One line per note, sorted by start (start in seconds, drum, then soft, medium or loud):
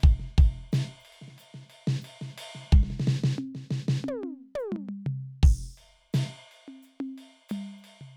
0.01 kick loud
0.01 ride soft
0.20 snare soft
0.38 kick loud
0.38 ride soft
0.73 snare loud
0.73 hi-hat pedal medium
0.73 ride medium
1.00 hi-hat pedal soft
1.05 ride soft
1.13 ride soft
1.22 snare soft
1.29 snare soft
1.38 hi-hat pedal medium
1.38 ride soft
1.55 snare soft
1.70 ride medium
1.88 snare loud
2.02 hi-hat pedal medium
2.02 ride medium
2.22 snare medium
2.38 ride loud
2.56 snare soft
2.73 kick loud
2.73 mid tom loud
2.84 snare medium
2.91 snare soft
3.00 snare medium
3.08 snare loud
3.24 snare loud
3.39 high tom loud
3.56 snare medium
3.71 snare loud
3.89 snare loud
4.05 high tom loud
4.09 high tom loud
4.24 high tom loud
4.56 hi-hat pedal soft
4.56 high tom loud
4.73 mid tom loud
4.77 mid tom medium
4.89 mid tom medium
5.07 floor tom loud
5.43 kick loud
5.43 crash medium
5.78 ride soft
6.13 snare loud
6.13 hi-hat pedal medium
6.13 ride medium
6.52 ride soft
6.68 high tom medium
6.83 hi-hat pedal medium
6.83 ride soft
7.01 high tom loud
7.18 ride soft
7.49 hi-hat pedal medium
7.49 mid tom loud
7.49 ride medium
7.78 hi-hat pedal soft
7.85 ride medium
8.02 floor tom medium